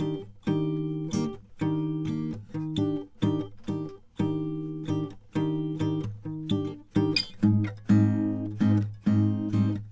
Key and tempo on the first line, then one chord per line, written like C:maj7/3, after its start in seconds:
D# major, 129 BPM
0.00 D#:maj7
7.44 G#:maj